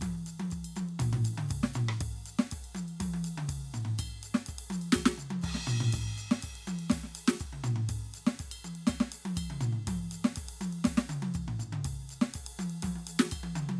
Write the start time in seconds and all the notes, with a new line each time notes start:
0.01 kick, high tom, ride, percussion
0.15 high tom
0.18 high tom
0.26 ride, percussion
0.40 high tom
0.51 kick, ride, percussion
0.65 ride bell
0.76 high tom, percussion
0.89 ride
0.99 kick, floor tom, ride, percussion
1.13 floor tom
1.25 ride, percussion
1.38 mid tom
1.49 kick, ride, percussion
1.63 snare
1.74 kick, floor tom, percussion
1.89 high tom
1.99 kick, ride, percussion
2.26 ride, percussion
2.39 snare
2.51 kick, ride, percussion
2.64 ride bell
2.75 high tom, percussion
2.88 ride bell
3.00 kick, high tom, ride, percussion
3.14 high tom
3.24 ride, percussion
3.38 mid tom
3.49 kick, ride, percussion
3.74 floor tom, percussion
3.85 floor tom
3.98 kick, ride bell, percussion
4.23 ride, percussion
4.34 snare
4.46 kick, ride, percussion
4.59 ride
4.70 high tom, percussion
4.82 ride bell
4.92 kick, snare, ride bell, percussion
5.06 snare
5.18 mid tom, percussion
5.30 high tom
5.42 kick, percussion, ride
5.54 snare
5.67 floor tom, percussion
5.80 floor tom
5.93 kick, ride, percussion
6.18 ride, percussion
6.31 snare
6.41 kick, ride, percussion
6.56 ride
6.67 high tom, percussion
6.79 ride
6.90 kick, snare, ride, percussion
7.04 snare
7.15 ride, percussion
7.28 snare
7.39 kick, ride bell, percussion
7.53 mid tom
7.64 floor tom, percussion
7.76 floor tom
7.89 kick, ride, percussion
8.14 ride, percussion
8.27 snare
8.39 kick, ride, percussion
8.52 ride bell
8.64 high tom, percussion
8.75 ride
8.87 kick, snare, ride bell, percussion
9.00 snare
9.12 ride, percussion
9.25 high tom
9.36 kick, ride bell, percussion
9.50 mid tom
9.61 floor tom, percussion
9.73 floor tom
9.87 kick, high tom, ride, percussion
10.11 ride, percussion
10.24 snare
10.36 kick, ride, percussion
10.49 ride
10.61 high tom, percussion
10.73 ride
10.84 kick, snare, ride, percussion
10.97 snare
11.09 mid tom, percussion
11.22 high tom
11.34 kick, ride bell, percussion, floor tom
11.48 floor tom
11.59 floor tom, percussion
11.73 mid tom
11.85 kick, ride, percussion
12.09 ride, percussion
12.21 snare
12.34 kick, ride, percussion
12.47 ride
12.59 high tom, percussion
12.70 ride
12.82 kick, high tom, ride, percussion
12.96 high tom
13.07 ride, percussion
13.19 snare
13.31 kick, ride bell, percussion
13.43 high tom
13.52 kick, mid tom, percussion
13.69 high tom